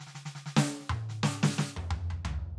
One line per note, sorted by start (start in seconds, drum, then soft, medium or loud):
0.00 snare soft
0.07 snare soft
0.15 snare medium
0.25 snare medium
0.35 snare medium
0.46 snare medium
0.56 snare loud
0.80 snare soft
0.90 high tom loud
1.09 snare soft
1.23 snare loud
1.43 snare loud
1.58 snare loud
1.76 mid tom loud
1.91 mid tom loud
2.10 floor tom medium
2.25 floor tom loud